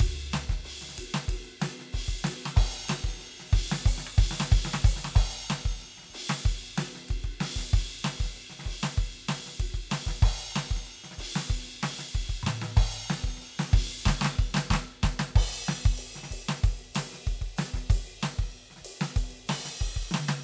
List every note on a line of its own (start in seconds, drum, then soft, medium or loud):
0.01 kick loud
0.01 hi-hat pedal soft
0.01 ride loud
0.33 snare loud
0.33 hi-hat pedal medium
0.50 kick medium
0.50 snare medium
0.65 hi-hat pedal medium
0.65 ride loud
0.82 snare medium
0.89 snare soft
0.93 snare soft
0.97 kick soft
0.97 hi-hat pedal medium
0.97 ride loud
1.14 snare loud
1.29 kick medium
1.29 ride loud
1.45 ride medium
1.61 kick soft
1.61 snare loud
1.61 hi-hat pedal medium
1.61 ride loud
1.80 snare soft
1.93 kick medium
1.93 ride loud
2.09 kick medium
2.24 snare loud
2.24 hi-hat pedal medium
2.24 ride loud
2.46 snare loud
2.55 kick loud
2.55 hi-hat pedal soft
2.55 crash loud
2.86 kick soft
2.86 snare loud
2.86 hi-hat pedal medium
2.86 ride loud
3.04 kick medium
3.04 snare soft
3.17 snare soft
3.17 hi-hat pedal medium
3.17 ride medium
3.22 snare soft
3.40 snare soft
3.45 snare soft
3.53 kick loud
3.53 hi-hat pedal medium
3.53 ride loud
3.72 snare loud
3.86 open hi-hat loud
3.86 kick loud
3.98 snare medium
4.07 cross-stick medium
4.18 kick loud
4.18 ride loud
4.31 snare medium
4.40 snare loud
4.51 kick loud
4.51 hi-hat pedal soft
4.51 ride loud
4.65 snare loud
4.74 snare loud
4.85 open hi-hat loud
4.85 kick loud
4.97 snare medium
5.05 snare medium
5.15 kick loud
5.15 crash loud
5.49 snare loud
5.49 hi-hat pedal medium
5.49 ride medium
5.66 kick medium
5.71 snare soft
5.80 snare soft
5.80 hi-hat pedal medium
5.80 ride soft
5.98 snare soft
6.03 snare soft
6.05 snare soft
6.10 kick soft
6.10 hi-hat pedal medium
6.14 ride loud
6.30 snare loud
6.45 kick loud
6.45 ride medium
6.60 ride soft
6.77 snare loud
6.77 hi-hat pedal medium
6.77 ride loud
6.95 snare medium
7.09 kick medium
7.09 ride medium
7.24 kick medium
7.24 ride medium
7.40 snare loud
7.40 hi-hat pedal medium
7.40 ride loud
7.56 kick medium
7.56 snare medium
7.74 kick loud
7.74 ride loud
8.05 snare loud
8.05 hi-hat pedal medium
8.05 ride medium
8.20 kick medium
8.20 snare soft
8.35 hi-hat pedal medium
8.35 ride medium
8.50 snare medium
8.60 snare medium
8.63 kick medium
8.63 snare medium
8.63 hi-hat pedal medium
8.63 ride loud
8.83 snare loud
8.98 kick medium
8.98 ride medium
9.13 ride medium
9.28 snare loud
9.28 hi-hat pedal medium
9.28 ride loud
9.47 snare medium
9.60 kick medium
9.60 ride medium
9.74 kick medium
9.74 ride soft
9.90 snare loud
9.90 hi-hat pedal medium
9.90 ride loud
10.07 kick medium
10.07 snare medium
10.23 kick loud
10.23 crash loud
10.55 snare loud
10.55 hi-hat pedal medium
10.55 ride medium
10.71 kick medium
10.76 snare soft
10.87 hi-hat pedal medium
10.87 ride soft
11.04 snare medium
11.12 snare medium
11.18 kick soft
11.18 hi-hat pedal medium
11.18 ride loud
11.36 snare loud
11.50 kick medium
11.50 ride medium
11.66 ride medium
11.82 snare loud
11.82 hi-hat pedal medium
11.82 ride loud
11.99 snare medium
12.14 kick medium
12.14 ride medium
12.30 kick medium
12.43 snare loud
12.43 hi-hat pedal medium
12.43 mid tom loud
12.62 snare loud
12.77 kick loud
12.77 crash loud
13.09 snare loud
13.09 hi-hat pedal medium
13.09 ride soft
13.24 kick medium
13.24 snare soft
13.37 snare soft
13.41 hi-hat pedal medium
13.41 ride medium
13.60 snare loud
13.70 kick loud
13.70 snare soft
13.74 ride loud
14.06 kick loud
14.06 snare loud
14.06 hi-hat pedal soft
14.09 snare loud
14.21 snare loud
14.25 snare loud
14.39 kick loud
14.39 hi-hat pedal medium
14.55 snare loud
14.57 snare loud
14.71 kick medium
14.71 snare loud
14.74 snare loud
15.03 kick medium
15.03 snare loud
15.20 snare loud
15.36 kick loud
15.36 crash loud
15.69 snare loud
15.69 hi-hat pedal medium
15.86 kick loud
15.92 snare soft
15.98 hi-hat pedal medium
15.98 crash loud
16.16 snare medium
16.24 snare medium
16.30 kick soft
16.30 hi-hat pedal soft
16.30 crash loud
16.49 snare loud
16.64 kick loud
16.64 crash medium
16.80 crash soft
16.92 kick soft
16.92 snare loud
16.92 hi-hat pedal medium
16.92 crash loud
17.13 snare medium
17.27 kick medium
17.27 crash medium
17.42 kick medium
17.42 crash soft
17.57 snare loud
17.57 hi-hat pedal medium
17.57 crash loud
17.74 kick medium
17.74 snare medium
17.90 kick loud
17.90 crash loud
18.22 snare loud
18.22 hi-hat pedal medium
18.22 crash medium
18.39 kick medium
18.39 snare soft
18.52 hi-hat pedal soft
18.52 crash soft
18.71 snare soft
18.77 snare soft
18.82 kick soft
18.82 hi-hat pedal medium
18.82 crash loud
19.01 snare loud
19.16 kick medium
19.16 crash medium
19.31 crash soft
19.46 kick soft
19.46 snare loud
19.46 hi-hat pedal medium
19.46 crash loud
19.66 snare medium
19.81 kick medium
19.81 crash medium
19.97 kick medium
20.12 snare loud
20.12 hi-hat pedal medium
20.12 high tom loud
20.29 snare loud